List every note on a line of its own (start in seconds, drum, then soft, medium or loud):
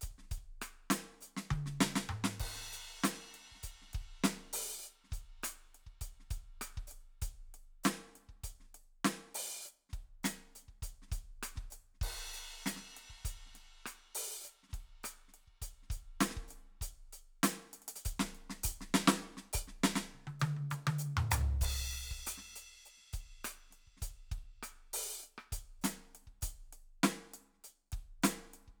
0.01 closed hi-hat medium
0.01 kick soft
0.05 snare soft
0.11 kick soft
0.18 snare soft
0.22 snare soft
0.30 closed hi-hat medium
0.30 kick soft
0.30 snare soft
0.37 kick soft
0.61 closed hi-hat medium
0.61 cross-stick medium
0.90 open hi-hat loud
0.90 snare medium
1.21 closed hi-hat medium
1.21 hi-hat pedal soft
1.36 snare medium
1.50 kick soft
1.50 high tom loud
1.58 kick soft
1.66 snare soft
1.80 snare loud
1.95 snare loud
2.09 mid tom medium
2.24 snare loud
2.40 kick soft
2.40 crash medium
2.46 kick soft
2.55 snare soft
2.60 snare soft
2.66 snare soft
2.73 closed hi-hat medium
3.04 open hi-hat loud
3.04 snare medium
3.04 hi-hat pedal medium
3.14 snare soft
3.34 closed hi-hat soft
3.52 kick soft
3.52 snare soft
3.63 closed hi-hat medium
3.63 kick soft
3.71 kick soft
3.81 snare soft
3.88 snare soft
3.92 kick soft
3.92 snare soft
3.92 closed hi-hat soft
4.01 kick soft
4.04 kick soft
4.24 closed hi-hat medium
4.24 snare loud
4.53 open hi-hat loud
4.83 hi-hat pedal soft
5.04 snare soft
5.09 closed hi-hat soft
5.09 kick soft
5.09 snare soft
5.18 kick soft
5.43 closed hi-hat loud
5.43 cross-stick medium
5.43 hi-hat pedal soft
5.74 closed hi-hat soft
5.86 kick soft
6.01 closed hi-hat medium
6.01 kick soft
6.20 snare soft
6.25 snare soft
6.30 closed hi-hat medium
6.30 kick soft
6.37 kick soft
6.61 closed hi-hat medium
6.61 cross-stick medium
6.77 kick soft
6.87 hi-hat pedal medium
6.91 closed hi-hat soft
7.22 closed hi-hat medium
7.22 kick soft
7.29 kick soft
7.54 closed hi-hat soft
7.83 closed hi-hat medium
7.83 snare loud
7.83 hi-hat pedal medium
8.15 closed hi-hat soft
8.29 kick soft
8.43 closed hi-hat medium
8.43 kick soft
8.51 kick soft
8.60 snare soft
8.63 snare soft
8.74 closed hi-hat soft
9.04 closed hi-hat medium
9.04 snare loud
9.31 open hi-hat loud
9.31 snare soft
9.65 hi-hat pedal medium
9.89 kick soft
9.89 snare soft
9.93 closed hi-hat soft
10.23 closed hi-hat medium
10.23 snare medium
10.23 hi-hat pedal soft
10.55 closed hi-hat soft
10.68 kick soft
10.82 closed hi-hat medium
10.82 kick soft
10.82 snare soft
10.92 kick soft
11.02 snare soft
11.07 snare soft
11.10 closed hi-hat medium
11.10 kick soft
11.10 snare soft
11.12 snare soft
11.19 kick soft
11.43 closed hi-hat medium
11.43 cross-stick medium
11.55 kick soft
11.55 snare soft
11.63 kick soft
11.70 closed hi-hat medium
11.70 hi-hat pedal soft
11.94 snare soft
12.01 kick medium
12.01 crash medium
12.08 kick soft
12.34 closed hi-hat medium
12.38 cross-stick soft
12.66 open hi-hat medium
12.66 snare medium
12.66 hi-hat pedal soft
12.76 snare soft
12.96 closed hi-hat soft
13.10 kick soft
13.25 closed hi-hat medium
13.25 kick soft
13.33 kick soft
13.46 snare soft
13.54 snare soft
13.54 closed hi-hat soft
13.86 closed hi-hat medium
13.86 cross-stick medium
14.15 open hi-hat loud
14.44 closed hi-hat soft
14.44 hi-hat pedal medium
14.63 snare soft
14.69 kick soft
14.69 snare soft
14.73 snare soft
14.73 closed hi-hat soft
15.03 closed hi-hat medium
15.03 cross-stick medium
15.03 hi-hat pedal medium
15.28 snare soft
15.34 closed hi-hat soft
15.47 kick soft
15.62 closed hi-hat medium
15.62 kick soft
15.82 snare soft
15.87 kick soft
15.87 snare soft
15.91 closed hi-hat medium
15.96 kick soft
16.20 closed hi-hat medium
16.20 snare loud
16.30 snare soft
16.37 kick soft
16.48 closed hi-hat soft
16.48 hi-hat pedal soft
16.56 snare soft
16.81 closed hi-hat medium
16.81 kick soft
17.12 closed hi-hat soft
17.43 closed hi-hat loud
17.43 snare loud
17.53 snare soft
17.73 closed hi-hat medium
17.82 closed hi-hat soft
17.88 closed hi-hat medium
17.96 closed hi-hat medium
18.05 closed hi-hat medium
18.05 kick soft
18.12 kick soft
18.19 snare loud
18.35 closed hi-hat soft
18.50 snare medium
18.63 closed hi-hat loud
18.63 kick soft
18.71 kick soft
18.81 snare soft
18.94 snare loud
19.07 snare loud
19.37 snare soft
19.53 open hi-hat loud
19.53 kick soft
19.53 hi-hat pedal soft
19.61 kick soft
19.67 snare soft
19.83 snare loud
19.95 snare loud
20.14 high tom soft
20.27 high tom medium
20.39 hi-hat pedal soft
20.39 high tom loud
20.56 high tom soft
20.70 hi-hat pedal medium
20.70 high tom medium
20.87 high tom loud
20.98 hi-hat pedal medium
21.17 mid tom loud
21.31 hi-hat pedal loud
21.31 floor tom loud
21.61 kick medium
21.61 hi-hat pedal loud
21.61 crash loud
21.93 cross-stick soft
22.11 kick soft
22.26 open hi-hat loud
22.26 cross-stick medium
22.37 snare soft
22.52 closed hi-hat medium
22.52 snare soft
22.85 open hi-hat soft
22.85 hi-hat pedal soft
22.97 snare soft
23.13 closed hi-hat soft
23.13 kick soft
23.44 open hi-hat medium
23.44 cross-stick medium
23.44 hi-hat pedal soft
23.70 snare soft
23.70 closed hi-hat soft
23.87 kick soft
23.97 snare soft
23.97 hi-hat pedal soft
24.02 closed hi-hat medium
24.02 kick soft
24.10 kick soft
24.31 kick soft
24.31 closed hi-hat soft
24.38 kick soft
24.63 closed hi-hat medium
24.63 cross-stick medium
24.93 open hi-hat loud
25.19 closed hi-hat soft
25.19 hi-hat pedal soft
25.38 cross-stick medium
25.52 closed hi-hat medium
25.52 kick soft
25.58 kick soft
25.81 closed hi-hat loud
25.81 snare loud
25.81 hi-hat pedal soft
26.15 closed hi-hat soft
26.27 kick soft
26.41 closed hi-hat medium
26.41 kick soft
26.41 hi-hat pedal soft
26.73 closed hi-hat soft
27.03 closed hi-hat medium
27.03 snare loud
27.34 closed hi-hat medium
27.53 snare soft
27.64 closed hi-hat medium
27.92 kick soft
27.92 closed hi-hat soft
28.22 closed hi-hat loud
28.22 snare loud
28.22 hi-hat pedal soft
28.53 closed hi-hat soft
28.68 kick soft